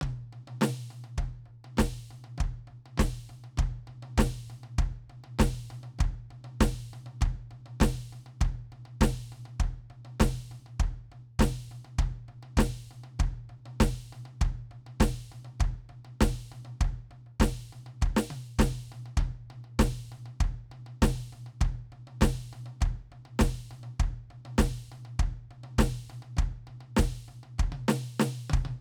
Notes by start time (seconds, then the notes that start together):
0.01 kick, mid tom
0.33 mid tom
0.48 mid tom
0.61 snare, mid tom
0.91 mid tom
1.04 mid tom
1.18 kick, mid tom
1.46 mid tom
1.64 mid tom
1.77 kick, snare, mid tom
2.11 mid tom
2.24 mid tom
2.38 kick, mid tom
2.67 mid tom
2.86 mid tom
2.98 kick, snare, mid tom
3.29 mid tom
3.44 mid tom
3.58 kick, mid tom
3.87 mid tom
4.03 mid tom
4.18 kick, snare, mid tom
4.50 mid tom
4.63 mid tom
4.78 kick, mid tom
5.10 mid tom
5.24 mid tom
5.39 kick, snare, mid tom
5.70 mid tom
5.83 mid tom
5.99 kick, mid tom
6.30 mid tom
6.44 mid tom
6.61 kick, snare, mid tom
6.93 mid tom
7.06 mid tom
7.21 kick, mid tom
7.51 mid tom
7.66 mid tom
7.80 kick, snare, mid tom
8.12 mid tom
8.26 mid tom
8.41 kick, mid tom
8.72 mid tom
8.85 mid tom
9.01 kick, snare, mid tom
9.32 mid tom
9.46 mid tom
9.60 kick, mid tom
9.90 mid tom
10.05 mid tom
10.20 kick, snare, mid tom
10.51 mid tom
10.66 mid tom
10.80 kick, mid tom
11.12 mid tom
11.39 kick, snare, mid tom
11.71 mid tom
11.85 mid tom
11.98 kick, mid tom
12.28 mid tom
12.43 mid tom
12.57 kick, snare, mid tom
12.91 mid tom
13.04 mid tom
13.19 kick, mid tom
13.49 mid tom
13.66 mid tom
13.80 kick, snare, mid tom
14.12 mid tom
14.25 mid tom
14.41 kick, mid tom
14.71 mid tom
14.87 mid tom
15.00 kick, snare, mid tom
15.32 mid tom
15.45 mid tom
15.60 kick, mid tom
15.89 mid tom
16.05 mid tom
16.21 kick, snare, mid tom
16.52 mid tom
16.65 mid tom
16.81 kick, mid tom
17.11 mid tom
17.26 mid tom
17.40 kick, snare, mid tom
17.73 mid tom
17.86 mid tom
18.02 kick, mid tom
18.16 snare
18.30 mid tom
18.59 kick, snare, mid tom
18.92 mid tom
19.06 mid tom
19.17 kick, mid tom
19.50 mid tom
19.64 mid tom
19.79 kick, snare, mid tom
20.12 mid tom
20.26 mid tom
20.40 kick, mid tom
20.71 mid tom
20.86 mid tom
21.02 kick, snare, mid tom
21.32 mid tom
21.46 mid tom
21.61 kick, mid tom
21.92 mid tom
22.07 mid tom
22.21 kick, snare, mid tom
22.53 mid tom
22.66 mid tom
22.81 kick, mid tom
23.12 mid tom
23.25 mid tom
23.39 kick, snare, mid tom
23.71 mid tom
23.83 mid tom
24.00 kick, mid tom
24.30 mid tom
24.45 mid tom
24.58 kick, snare, mid tom
24.92 mid tom
25.05 mid tom
25.19 kick, mid tom
25.51 mid tom
25.64 mid tom
25.78 kick, snare, mid tom
26.10 mid tom
26.22 mid tom
26.37 kick, mid tom
26.67 mid tom
26.81 mid tom
26.97 kick, snare, mid tom
27.28 mid tom
27.43 mid tom
27.59 kick, mid tom
27.72 mid tom
27.88 snare, mid tom
28.20 snare, mid tom
28.50 kick, mid tom
28.65 mid tom